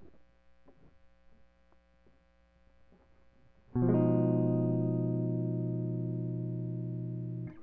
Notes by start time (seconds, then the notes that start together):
3.77 B2
3.83 F3
3.89 G#3
3.94 D#4